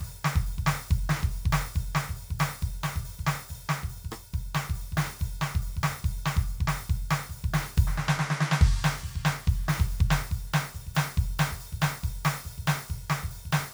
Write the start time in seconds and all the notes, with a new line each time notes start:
0.01 open hi-hat, kick, snare
0.25 open hi-hat, snare
0.36 kick
0.40 snare
0.47 open hi-hat
0.58 kick
0.67 open hi-hat, snare
0.87 open hi-hat, kick, snare
1.10 open hi-hat, snare
1.23 kick
1.31 open hi-hat
1.46 kick
1.53 open hi-hat, snare
1.74 open hi-hat, kick
1.95 open hi-hat, snare
2.10 kick
2.14 open hi-hat, snare
2.31 kick
2.40 open hi-hat, snare
2.62 open hi-hat, kick
2.84 open hi-hat, snare
2.96 kick
3.03 open hi-hat, snare
3.19 kick
3.27 open hi-hat, snare
3.48 open hi-hat, kick, snare
3.69 open hi-hat, snare
3.84 kick
3.90 open hi-hat
4.05 kick
4.11 open hi-hat, cross-stick
4.33 open hi-hat, kick
4.55 open hi-hat, snare
4.68 kick, snare
4.75 open hi-hat
4.92 kick
4.97 open hi-hat, snare
5.19 open hi-hat, kick, snare
5.41 open hi-hat, snare
5.55 kick
5.62 open hi-hat
5.77 kick
5.83 open hi-hat, snare
6.04 open hi-hat, kick
6.26 open hi-hat, snare
6.37 kick, snare
6.48 open hi-hat
6.61 kick
6.68 open hi-hat, snare
6.90 open hi-hat, kick
7.11 open hi-hat, snare
7.30 open hi-hat, kick
7.44 kick
7.54 open hi-hat, snare
7.77 open hi-hat, kick
7.87 snare
7.98 snare
8.09 snare
8.19 snare
8.30 snare
8.41 snare
8.52 snare
8.61 kick, crash
8.84 open hi-hat, snare
9.04 open hi-hat, kick
9.16 kick
9.25 open hi-hat, snare
9.45 open hi-hat, kick, snare
9.69 open hi-hat, snare
9.80 kick, snare
9.90 open hi-hat
10.01 kick
10.11 open hi-hat, snare
10.25 snare
10.32 open hi-hat, kick
10.54 open hi-hat, snare
10.75 open hi-hat, kick
10.87 kick
10.95 open hi-hat, snare
11.16 open hi-hat, kick, snare
11.39 open hi-hat, snare
11.52 kick, snare
11.60 open hi-hat
11.73 kick
11.82 open hi-hat, snare
12.03 open hi-hat, kick
12.25 open hi-hat, snare
12.45 open hi-hat, kick
12.58 kick
12.67 open hi-hat, snare
12.88 open hi-hat, kick
13.10 open hi-hat, snare
13.24 kick, snare
13.31 open hi-hat
13.46 kick
13.52 open hi-hat, snare